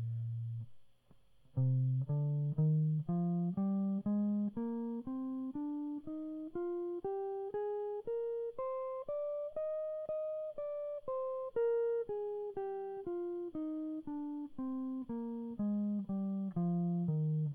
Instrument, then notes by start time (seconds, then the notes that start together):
electric guitar
1.59 C3
2.11 D3
2.60 D#3
3.10 F3
3.59 G3
4.07 G#3
4.58 A#3
5.08 C4
5.56 D4
6.08 D#4
6.56 F4
7.05 G4
7.55 G#4
8.08 A#4
8.59 C5
9.09 D5
9.57 D#5
10.09 D#5
10.59 D5
11.08 C5
11.57 A#4
12.10 G#4
12.57 G4
13.07 F4
13.56 D#4
14.08 D4
14.59 C4
15.10 A#3
15.61 G#3
16.01 G3
16.10 G3
16.58 F3
17.10 D#3
17.49 D3